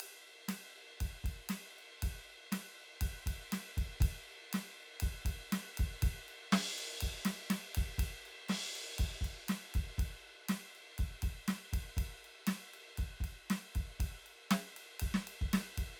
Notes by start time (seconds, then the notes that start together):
0.00 ride
0.48 snare, ride
1.00 kick, ride
1.24 kick, ride
1.49 snare, ride
1.78 ride
2.02 kick, ride
2.52 snare, ride
3.01 kick, ride
3.26 kick, ride
3.52 snare, ride
3.77 kick, ride
4.00 kick, ride
4.53 snare, ride
5.00 kick, ride
5.25 kick, ride
5.52 snare, ride
5.77 kick, ride
6.02 kick, ride
6.28 ride
6.52 snare, ride
6.78 ride
7.01 kick, ride
7.25 snare, ride
7.50 snare, ride
7.75 kick, ride
7.98 kick, ride
8.25 ride
8.49 snare, ride
8.75 ride
8.98 kick, ride
9.21 kick, ride
9.48 snare, ride
9.74 kick, ride
9.98 kick, ride
10.49 snare, ride
10.75 ride
10.98 kick, ride
11.22 kick, ride
11.48 snare, ride
11.73 kick, ride
11.97 kick, ride
12.24 ride
12.47 snare, ride
12.74 ride
12.97 kick, ride
13.20 kick, ride
13.50 snare, ride
13.75 kick, ride
13.99 kick, ride
14.26 ride
14.51 snare, ride
14.76 ride
14.99 kick, ride
15.14 snare
15.27 ride
15.41 kick
15.53 snare, ride
15.77 kick, ride